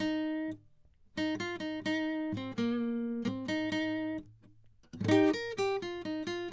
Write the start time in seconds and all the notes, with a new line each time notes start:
0.01 D#4
1.18 D#4
1.41 F4
1.61 D#4
1.86 D#4
2.38 C4
2.59 A#3
3.26 C4
3.49 D#4
3.73 D#4
5.09 D#4 G4
5.35 A#4
5.59 G4
5.83 F4
6.07 D#4
6.28 F4